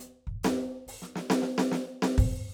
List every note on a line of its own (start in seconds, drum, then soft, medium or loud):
0.01 closed hi-hat medium
0.28 kick medium
0.44 closed hi-hat medium
0.44 snare loud
0.87 open hi-hat loud
0.87 kick soft
1.03 snare medium
1.16 snare medium
1.31 snare loud
1.43 snare medium
1.59 snare loud
1.73 snare loud
2.03 snare loud
2.19 open hi-hat medium
2.19 kick loud